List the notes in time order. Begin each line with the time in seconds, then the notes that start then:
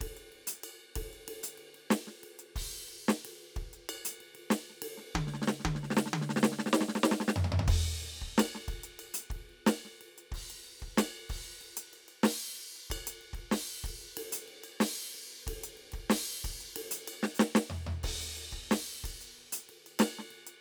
0.01 kick, ride
0.17 closed hi-hat
0.33 ride
0.47 closed hi-hat
0.64 ride bell
0.96 kick, ride
1.13 closed hi-hat
1.28 ride
1.44 closed hi-hat
1.58 ride
1.75 ride
1.91 snare, ride
2.07 snare
2.24 ride
2.39 closed hi-hat
2.56 kick, crash
2.74 closed hi-hat
2.89 ride
3.09 snare
3.25 ride
3.44 closed hi-hat
3.57 kick, ride
3.74 closed hi-hat
3.90 ride bell
4.05 closed hi-hat
4.21 ride
4.35 ride
4.51 snare, ride bell
4.70 snare
4.82 ride
4.98 snare
5.15 kick, high tom
5.27 snare
5.34 snare
5.42 snare
5.48 snare
5.60 snare
5.65 kick, high tom
5.75 snare
5.84 snare
5.91 snare
5.97 snare
6.06 snare
6.14 high tom
6.22 snare
6.30 snare
6.37 snare
6.43 snare
6.52 snare
6.57 kick, snare
6.67 snare
6.73 snare
6.81 snare
6.89 snare
6.96 snare
7.04 snare
7.12 snare
7.21 snare
7.28 snare
7.36 floor tom
7.45 floor tom
7.52 floor tom
7.60 floor tom
7.68 kick, ride
8.22 kick
8.38 snare, ride bell
8.55 snare
8.68 kick, ride
8.84 closed hi-hat
9.00 ride bell
9.14 closed hi-hat
9.31 kick, ride
9.50 ride
9.67 snare, ride bell
9.85 snare
10.01 ride
10.18 closed hi-hat
10.32 kick, crash
10.50 closed hi-hat
10.65 ride
10.81 kick, ride
10.98 snare, ride bell
11.30 kick, crash
11.45 closed hi-hat
11.62 ride
11.77 closed hi-hat
11.94 ride bell
12.09 ride bell
12.24 snare, crash
12.60 ride
12.76 closed hi-hat
12.90 kick, ride bell
13.07 closed hi-hat
13.22 closed hi-hat, ride
13.34 kick, ride
13.52 snare, crash
13.84 kick, ride
14.02 closed hi-hat
14.17 ride
14.33 closed hi-hat
14.48 ride
14.64 ride bell
14.81 snare, crash
15.15 ride
15.33 closed hi-hat
15.47 kick, ride
15.64 closed hi-hat
15.78 ride
15.92 kick, ride
16.10 snare, crash
16.45 kick, ride bell
16.61 closed hi-hat
16.76 ride
16.91 closed hi-hat
17.08 ride bell
17.23 snare
17.35 hi-hat pedal
17.40 snare
17.56 snare
17.70 floor tom
17.87 floor tom
18.04 kick, ride
18.21 closed hi-hat
18.37 ride
18.52 kick, ride bell
18.72 snare, crash
19.04 kick, ride bell
19.21 closed hi-hat
19.38 ride
19.53 closed hi-hat
19.69 ride
19.87 ride bell
20.00 snare, ride bell
20.19 snare
20.31 ride
20.47 closed hi-hat